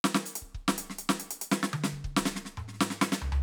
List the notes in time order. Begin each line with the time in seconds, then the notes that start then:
0.04 snare
0.14 snare
0.26 closed hi-hat
0.35 closed hi-hat
0.42 kick
0.54 kick
0.68 snare
0.78 closed hi-hat
0.90 snare
0.98 closed hi-hat
1.09 snare
1.20 closed hi-hat
1.31 closed hi-hat
1.41 closed hi-hat
1.51 snare
1.63 snare
1.73 high tom
1.84 snare
1.93 kick
2.04 kick
2.16 snare
2.25 snare
2.45 snare
2.57 mid tom
2.68 snare
2.73 snare
2.81 snare
2.90 snare
3.01 snare
3.12 snare
3.22 floor tom
3.32 floor tom